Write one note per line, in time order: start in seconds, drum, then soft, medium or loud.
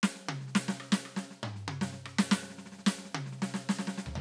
0.03 snare loud
0.15 snare soft
0.20 snare soft
0.26 snare soft
0.26 high tom loud
0.40 snare soft
0.47 snare soft
0.55 snare loud
0.68 snare loud
0.80 cross-stick medium
0.92 snare loud
1.05 cross-stick medium
1.16 snare medium
1.30 snare soft
1.43 mid tom loud
1.55 snare soft
1.68 high tom loud
1.81 snare loud
1.92 snare soft
2.06 cross-stick medium
2.18 snare loud
2.31 snare loud
2.43 snare soft
2.50 snare soft
2.58 snare soft
2.66 snare soft
2.72 snare soft
2.78 snare soft
2.86 snare loud
2.98 snare soft
3.05 snare soft
3.15 high tom loud
3.26 snare soft
3.32 snare soft
3.38 snare soft
3.42 snare loud
3.54 snare medium
3.69 snare loud
3.78 snare medium
3.87 snare medium
3.97 snare medium
4.06 floor tom medium
4.15 floor tom loud